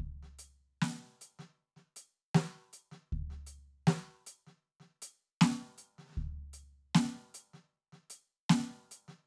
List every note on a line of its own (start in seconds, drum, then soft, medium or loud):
0.01 kick soft
0.24 snare soft
0.40 closed hi-hat medium
0.83 snare medium
0.89 closed hi-hat soft
1.22 closed hi-hat medium
1.40 snare soft
1.78 snare soft
1.97 closed hi-hat medium
2.36 snare loud
2.74 closed hi-hat medium
2.93 snare soft
3.14 kick medium
3.32 snare soft
3.48 closed hi-hat soft
3.88 snare loud
4.28 closed hi-hat medium
4.48 snare soft
4.81 snare soft
4.86 snare soft
5.03 closed hi-hat medium
5.42 snare loud
5.79 closed hi-hat soft
6.00 snare soft
6.04 snare soft
6.08 snare soft
6.11 snare soft
6.15 kick medium
6.15 snare soft
6.54 closed hi-hat medium
6.96 snare loud
7.16 snare soft
7.36 closed hi-hat medium
7.55 snare soft
7.94 snare soft
8.11 closed hi-hat medium
8.51 snare loud
8.92 closed hi-hat medium
9.09 snare soft